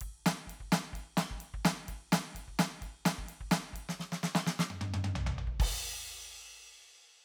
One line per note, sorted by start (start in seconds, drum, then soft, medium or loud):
0.02 kick soft
0.02 ride medium
0.26 snare loud
0.26 ride medium
0.47 kick soft
0.47 ride medium
0.60 kick soft
0.72 snare loud
0.72 ride medium
0.93 kick soft
0.93 ride soft
1.17 snare loud
1.17 ride medium
1.31 kick soft
1.40 ride medium
1.54 kick soft
1.65 snare loud
1.65 ride medium
1.88 kick soft
1.88 ride medium
2.12 snare loud
2.12 ride medium
2.35 kick soft
2.35 ride medium
2.48 kick soft
2.59 snare loud
2.59 ride medium
2.81 kick soft
2.81 ride soft
3.05 snare loud
3.05 ride medium
3.18 kick soft
3.29 ride medium
3.40 kick soft
3.51 snare loud
3.51 ride medium
3.66 snare soft
3.73 kick soft
3.73 ride medium
3.89 snare medium
3.99 snare medium
4.12 snare medium
4.23 snare loud
4.35 snare loud
4.46 snare loud
4.59 snare loud
4.70 high tom medium
4.81 high tom loud
4.94 high tom loud
5.04 high tom loud
5.15 floor tom loud
5.26 floor tom loud
5.38 floor tom medium
5.47 kick soft
5.60 kick loud
5.60 crash loud